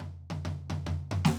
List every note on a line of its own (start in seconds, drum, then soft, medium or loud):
0.05 floor tom medium
0.05 high tom medium
0.30 floor tom medium
0.30 high tom loud
0.45 floor tom loud
0.45 high tom loud
0.70 floor tom loud
0.70 high tom loud
0.86 floor tom loud
0.86 high tom loud
1.11 floor tom loud
1.11 high tom loud
1.25 snare loud
1.27 snare loud